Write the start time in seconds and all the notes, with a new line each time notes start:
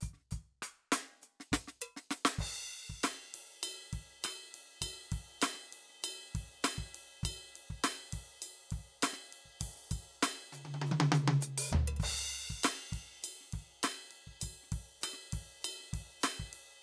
0.01 open hi-hat, kick
0.10 kick, snare
0.13 kick, snare
0.19 snare
0.31 closed hi-hat, kick
0.38 kick
0.62 closed hi-hat, cross-stick
0.92 closed hi-hat, snare
1.22 closed hi-hat, hi-hat pedal
1.40 snare
1.52 kick, snare
1.58 kick
1.68 snare
1.81 hi-hat pedal, percussion
1.96 snare
2.10 snare, hi-hat pedal
2.25 snare
2.38 kick, crash
2.49 kick
2.90 kick
3.03 snare, hi-hat pedal, ride bell
3.34 ride
3.63 hi-hat pedal, ride bell
3.93 kick, ride
3.99 kick
4.23 cross-stick, hi-hat pedal, ride bell
4.54 ride
4.81 kick, hi-hat pedal, ride bell
5.12 kick, ride
5.40 snare, hi-hat pedal, ride bell
5.54 snare
5.73 ride
5.89 snare
5.95 snare
6.02 hi-hat pedal, ride bell
6.35 kick, ride
6.44 kick
6.62 snare, hi-hat pedal, ride bell
6.75 kick, snare
6.95 ride
7.23 kick, hi-hat pedal, ride bell
7.34 kick
7.55 ride
7.70 kick
7.83 snare, hi-hat pedal, ride bell
8.12 kick, ride
8.42 hi-hat pedal, ride bell
8.71 kick, ride
8.79 kick
9.02 snare, hi-hat pedal, ride bell
9.13 snare
9.33 ride
9.45 kick
9.60 kick, hi-hat pedal, ride
9.67 kick
9.69 kick
9.75 snare
9.79 snare
9.91 kick, ride bell
9.99 kick
10.22 snare, hi-hat pedal, ride bell
10.52 hi-hat pedal, high tom
10.65 high tom
10.74 high tom
10.81 high tom
10.86 hi-hat pedal
10.91 high tom
11.00 high tom
11.12 hi-hat pedal, high tom
11.28 high tom
11.41 closed hi-hat, hi-hat pedal
11.58 closed hi-hat
11.70 kick, floor tom, hi-hat pedal
11.87 percussion
11.96 kick, hi-hat pedal, percussion
12.03 crash
12.12 kick
12.14 kick
12.50 kick
12.63 snare, hi-hat pedal, ride bell
12.90 kick, snare, ride
12.98 kick
13.22 hi-hat pedal, ride bell
13.41 snare
13.44 snare
13.53 kick, cross-stick, ride
13.59 kick
13.83 snare, hi-hat pedal, ride bell
14.11 ride
14.27 kick
14.40 kick, hi-hat pedal, ride bell
14.50 kick
14.53 kick
14.63 snare
14.66 snare
14.72 kick, ride
14.79 kick
15.01 cross-stick, hi-hat pedal, ride bell
15.13 snare
15.32 kick, ride
15.39 kick
15.43 kick
15.61 hi-hat pedal, ride bell
15.80 snare
15.83 snare
15.87 snare
15.93 kick, cross-stick, ride
16.00 kick
16.21 snare, hi-hat pedal, ride bell
16.39 kick
16.53 ride